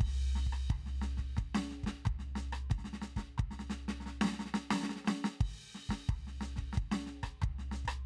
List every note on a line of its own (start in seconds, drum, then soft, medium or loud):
0.01 kick medium
0.01 crash medium
0.07 snare soft
0.36 snare soft
0.47 kick soft
0.53 cross-stick medium
0.70 kick soft
0.70 floor tom medium
0.87 snare soft
1.02 snare soft
1.02 hi-hat pedal soft
1.18 kick soft
1.18 snare soft
1.37 kick soft
1.37 snare soft
1.55 snare medium
1.69 snare soft
1.69 hi-hat pedal soft
1.84 kick soft
1.84 snare medium
2.05 kick soft
2.05 floor tom medium
2.19 snare soft
2.36 snare medium
2.36 hi-hat pedal medium
2.53 cross-stick medium
2.70 kick soft
2.70 snare soft
2.78 snare soft
2.85 snare soft
2.93 snare soft
3.02 snare soft
3.02 hi-hat pedal soft
3.17 kick soft
3.17 snare soft
3.38 kick soft
3.38 floor tom medium
3.51 snare soft
3.60 snare soft
3.70 snare medium
3.70 hi-hat pedal soft
3.88 snare medium
4.00 snare soft
4.06 snare soft
4.21 snare loud
4.25 snare medium
4.27 snare medium
4.33 snare soft
4.39 snare soft
4.46 snare soft
4.54 snare medium
4.71 snare loud
4.76 cross-stick medium
4.81 snare soft
4.83 snare medium
4.88 snare soft
4.88 snare medium
4.96 snare soft
5.05 snare soft
5.08 snare medium
5.25 snare medium
5.41 kick medium
5.41 crash medium
5.75 snare soft
5.89 kick soft
5.89 snare medium
6.09 kick soft
6.09 floor tom medium
6.27 snare soft
6.41 snare soft
6.41 hi-hat pedal medium
6.56 kick soft
6.56 snare soft
6.73 snare soft
6.78 kick soft
6.92 snare medium
7.07 snare soft
7.07 hi-hat pedal soft
7.23 kick soft
7.23 cross-stick medium
7.42 kick soft
7.42 floor tom medium
7.59 snare soft
7.72 snare soft
7.72 hi-hat pedal medium
7.85 kick soft
7.85 cross-stick medium